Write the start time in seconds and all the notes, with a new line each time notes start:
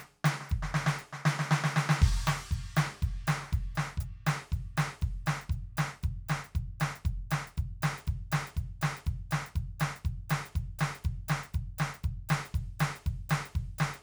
0.01 closed hi-hat
0.25 closed hi-hat, snare
0.41 snare
0.50 closed hi-hat, kick
0.63 snare
0.75 snare
0.87 snare
1.00 closed hi-hat
1.13 snare
1.26 snare
1.40 snare
1.52 snare
1.65 snare
1.77 snare
1.90 snare
2.02 kick, crash
2.28 closed hi-hat, snare
2.52 closed hi-hat, kick
2.77 closed hi-hat, snare
3.03 closed hi-hat, kick
3.28 closed hi-hat, snare
3.42 snare
3.48 snare
3.53 closed hi-hat, kick
3.76 closed hi-hat, snare
3.98 closed hi-hat, kick
4.27 closed hi-hat, snare
4.53 closed hi-hat, kick
4.78 closed hi-hat, snare
5.02 closed hi-hat, kick
5.27 closed hi-hat, snare
5.42 closed hi-hat
5.50 closed hi-hat, kick
5.78 closed hi-hat, snare
6.04 closed hi-hat, kick
6.29 closed hi-hat, snare
6.45 closed hi-hat
6.56 closed hi-hat, kick
6.81 closed hi-hat, snare
6.96 closed hi-hat
7.06 closed hi-hat, kick
7.31 closed hi-hat, snare
7.48 closed hi-hat
7.58 kick
7.83 closed hi-hat, snare
7.99 closed hi-hat
8.08 closed hi-hat, kick
8.32 closed hi-hat, snare
8.48 closed hi-hat
8.57 closed hi-hat, kick
8.82 closed hi-hat, snare
8.97 closed hi-hat
9.07 closed hi-hat, kick
9.32 closed hi-hat, snare
9.47 closed hi-hat
9.56 closed hi-hat, kick
9.81 closed hi-hat, snare
9.97 closed hi-hat
10.06 closed hi-hat, kick
10.30 closed hi-hat, snare
10.46 closed hi-hat
10.56 closed hi-hat, kick
10.80 closed hi-hat, snare
10.96 closed hi-hat
11.05 closed hi-hat, kick
11.29 closed hi-hat, snare
11.44 closed hi-hat
11.55 closed hi-hat, kick
11.79 closed hi-hat, snare
11.95 closed hi-hat
12.04 closed hi-hat, kick
12.30 closed hi-hat, snare
12.46 closed hi-hat
12.55 closed hi-hat, kick
12.80 closed hi-hat, snare
12.97 closed hi-hat
13.07 closed hi-hat, kick
13.30 closed hi-hat, snare
13.46 closed hi-hat
13.56 closed hi-hat, kick
13.79 closed hi-hat, snare
13.94 closed hi-hat